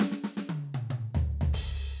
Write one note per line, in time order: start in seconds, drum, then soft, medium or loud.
0.01 snare loud
0.11 snare medium
0.23 snare medium
0.37 snare medium
0.49 high tom loud
0.74 mid tom loud
0.90 mid tom loud
1.14 floor tom loud
1.41 floor tom loud
1.53 kick medium
1.53 crash loud